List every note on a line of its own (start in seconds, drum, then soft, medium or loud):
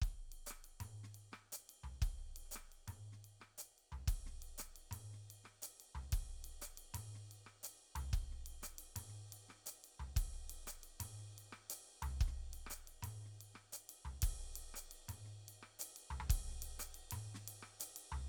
0.01 kick medium
0.01 ride soft
0.32 ride soft
0.46 cross-stick soft
0.46 hi-hat pedal medium
0.50 cross-stick soft
0.64 ride soft
0.80 mid tom medium
0.80 ride soft
1.03 snare soft
1.14 ride soft
1.32 cross-stick soft
1.32 snare soft
1.52 hi-hat pedal medium
1.52 ride soft
1.69 ride soft
1.83 floor tom medium
2.01 kick medium
2.01 ride soft
2.18 snare soft
2.36 ride soft
2.46 cross-stick soft
2.51 snare soft
2.51 hi-hat pedal medium
2.72 ride soft
2.87 mid tom medium
2.87 ride soft
3.12 snare soft
3.24 ride soft
3.40 cross-stick soft
3.40 snare soft
3.58 hi-hat pedal medium
3.58 ride soft
3.78 ride soft
3.92 floor tom medium
4.07 kick medium
4.07 ride medium
4.26 snare soft
4.42 ride soft
4.58 cross-stick soft
4.58 snare soft
4.58 hi-hat pedal medium
4.76 ride soft
4.91 mid tom medium
4.91 ride medium
5.13 snare soft
5.30 ride soft
5.44 cross-stick soft
5.44 snare soft
5.62 hi-hat pedal medium
5.62 ride medium
5.80 ride soft
5.95 floor tom medium
6.12 kick medium
6.12 ride medium
6.44 ride soft
6.60 cross-stick soft
6.60 snare soft
6.60 hi-hat pedal medium
6.77 ride soft
6.94 mid tom medium
6.94 ride medium
7.14 snare soft
7.31 ride soft
7.45 cross-stick soft
7.45 snare soft
7.63 hi-hat pedal medium
7.63 ride medium
7.95 floor tom medium
7.95 ride soft
8.13 kick medium
8.13 ride soft
8.31 snare soft
8.46 ride soft
8.62 cross-stick soft
8.62 snare soft
8.62 hi-hat pedal medium
8.78 ride medium
8.96 mid tom medium
8.96 ride medium
9.09 snare soft
9.32 ride soft
9.48 cross-stick soft
9.48 snare soft
9.66 hi-hat pedal medium
9.66 ride medium
9.84 ride soft
9.99 floor tom medium
10.16 kick medium
10.16 ride medium
10.32 snare soft
10.49 ride medium
10.66 cross-stick soft
10.66 snare soft
10.66 hi-hat pedal medium
10.83 ride soft
11.00 mid tom medium
11.00 ride medium
11.18 snare soft
11.38 ride soft
11.51 cross-stick soft
11.51 snare soft
11.69 hi-hat pedal medium
11.69 ride medium
12.02 floor tom medium
12.02 ride soft
12.20 kick medium
12.20 ride soft
12.27 snare soft
12.53 ride soft
12.66 cross-stick soft
12.66 hi-hat pedal medium
12.70 cross-stick soft
12.87 ride soft
13.02 mid tom medium
13.02 ride medium
13.25 snare soft
13.40 ride soft
13.54 cross-stick soft
13.54 snare soft
13.72 hi-hat pedal medium
13.72 ride soft
13.89 ride medium
14.05 floor tom medium
14.22 kick medium
14.22 ride medium
14.42 snare soft
14.55 ride medium
14.73 cross-stick soft
14.73 snare soft
14.73 hi-hat pedal medium
14.91 ride soft
15.08 mid tom medium
15.08 ride medium
15.25 snare soft
15.48 ride soft
15.62 cross-stick soft
15.62 snare soft
15.79 hi-hat pedal medium
15.79 ride medium
15.96 ride soft
16.10 floor tom medium
16.20 floor tom medium
16.29 kick medium
16.29 ride medium
16.50 snare soft
16.62 ride medium
16.78 cross-stick soft
16.78 snare soft
16.78 hi-hat pedal medium
16.94 ride soft
17.11 mid tom medium
17.11 ride medium
17.34 snare soft
17.47 ride medium
17.62 cross-stick soft
17.73 snare soft
17.80 hi-hat pedal medium
17.80 ride medium
17.96 ride medium
18.12 floor tom medium